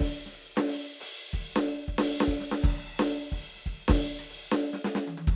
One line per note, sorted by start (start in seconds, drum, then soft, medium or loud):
0.01 kick medium
0.01 ride loud
0.27 snare soft
0.30 snare soft
0.34 hi-hat pedal medium
0.34 ride medium
0.57 snare loud
0.57 ride medium
0.69 ride loud
1.01 open hi-hat medium
1.01 hi-hat pedal loud
1.01 ride loud
1.33 kick medium
1.33 ride medium
1.57 snare loud
1.63 hi-hat pedal soft
1.69 ride bell loud
1.89 kick medium
1.99 snare loud
1.99 ride loud
2.21 snare loud
2.28 kick medium
2.28 ride loud
2.41 snare medium
2.52 snare loud
2.64 kick loud
2.64 crash loud
2.98 snare loud
2.98 hi-hat pedal medium
2.98 ride medium
3.22 ride medium
3.33 kick medium
3.33 ride medium
3.56 snare soft
3.61 cross-stick soft
3.67 kick medium
3.67 hi-hat pedal soft
3.67 ride medium
3.89 kick loud
3.89 snare loud
3.89 ride loud
4.20 cross-stick medium
4.31 hi-hat pedal soft
4.31 ride medium
4.53 snare loud
4.74 snare medium
4.85 snare loud
4.91 hi-hat pedal medium
4.96 snare loud
5.08 high tom medium
5.18 high tom medium
5.28 kick loud
5.28 crash medium